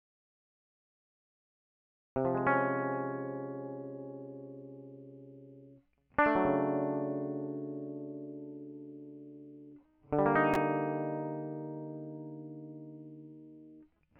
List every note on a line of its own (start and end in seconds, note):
2.17 5.81 C3
2.26 5.80 F3
2.35 5.75 G#3
2.47 5.83 C#4
6.19 9.85 D4
6.27 9.75 A3
6.36 9.80 F#3
6.46 9.80 C#3
10.14 13.85 D3
10.19 13.87 G3
10.26 13.84 A#3
10.36 13.88 D#4